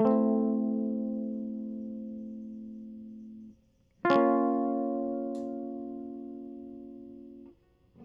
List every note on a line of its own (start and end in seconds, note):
0.00 3.54 A3
0.05 3.54 C4
0.10 3.55 E4
4.05 7.56 F4
4.10 7.53 C#4
4.15 7.51 A#3